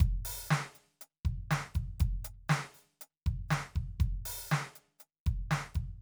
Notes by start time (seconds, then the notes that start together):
0.01 closed hi-hat, kick
0.26 open hi-hat
0.49 snare, hi-hat pedal
0.76 closed hi-hat
1.02 closed hi-hat
1.26 kick, closed hi-hat
1.52 closed hi-hat, snare
1.76 closed hi-hat, kick
2.01 closed hi-hat, kick
2.25 closed hi-hat
2.49 snare, hi-hat pedal
2.75 hi-hat pedal, open hi-hat
3.02 closed hi-hat
3.27 kick, closed hi-hat
3.49 closed hi-hat, snare, hi-hat pedal
3.76 kick, closed hi-hat
4.01 closed hi-hat, kick
4.26 open hi-hat
4.51 snare, hi-hat pedal
4.76 closed hi-hat
4.99 closed hi-hat, hi-hat pedal
5.27 closed hi-hat, kick
5.52 closed hi-hat, snare
5.75 closed hi-hat, kick